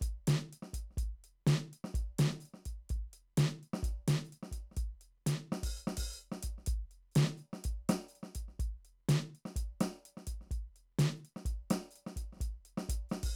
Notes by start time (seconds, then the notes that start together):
0.01 closed hi-hat, kick
0.27 closed hi-hat, snare
0.52 closed hi-hat
0.62 snare
0.73 closed hi-hat, kick
0.90 snare
0.97 closed hi-hat, kick
1.03 kick
1.24 closed hi-hat
1.46 closed hi-hat, snare
1.73 closed hi-hat
1.84 snare
1.94 closed hi-hat, kick
2.18 closed hi-hat, snare
2.27 snare
2.40 hi-hat pedal
2.45 closed hi-hat
2.53 snare
2.62 closed hi-hat, snare
2.66 kick
2.89 closed hi-hat, kick
2.96 kick
3.13 closed hi-hat
3.37 closed hi-hat, snare
3.63 closed hi-hat
3.73 snare
3.82 closed hi-hat, kick
3.88 kick
4.07 open hi-hat, snare
4.24 hi-hat pedal
4.32 closed hi-hat
4.42 snare
4.51 closed hi-hat, kick
4.71 snare
4.76 closed hi-hat, kick
5.01 closed hi-hat
5.26 closed hi-hat, snare
5.52 snare
5.63 open hi-hat, kick
5.77 hi-hat pedal
5.87 snare
5.97 open hi-hat, kick
6.15 hi-hat pedal
6.20 closed hi-hat
6.31 snare
6.42 closed hi-hat, kick
6.58 snare
6.66 closed hi-hat, kick
6.73 kick
6.91 closed hi-hat
7.11 closed hi-hat, hi-hat pedal
7.16 snare
7.23 snare
7.37 hi-hat pedal
7.53 snare
7.64 closed hi-hat, kick
7.89 closed hi-hat, snare
8.08 hi-hat pedal
8.15 closed hi-hat
8.23 snare
8.35 closed hi-hat, kick
8.48 snare
8.59 closed hi-hat, kick
8.85 closed hi-hat
9.09 closed hi-hat, snare
9.35 closed hi-hat
9.45 snare
9.56 closed hi-hat, kick
9.80 closed hi-hat, snare
10.05 closed hi-hat
10.17 snare
10.27 closed hi-hat, kick
10.41 snare
10.47 kick, snare
10.51 closed hi-hat, snare
10.76 closed hi-hat
10.99 closed hi-hat, snare
11.15 hi-hat pedal
11.25 closed hi-hat
11.36 snare
11.45 closed hi-hat, kick
11.70 closed hi-hat, snare
11.90 hi-hat pedal
11.95 closed hi-hat
12.06 snare
12.16 closed hi-hat, kick
12.32 snare
12.37 snare
12.40 closed hi-hat, kick, snare
12.65 closed hi-hat
12.77 snare
12.89 open hi-hat, kick
12.94 kick
13.09 snare, hi-hat pedal
13.23 open hi-hat, kick
13.28 kick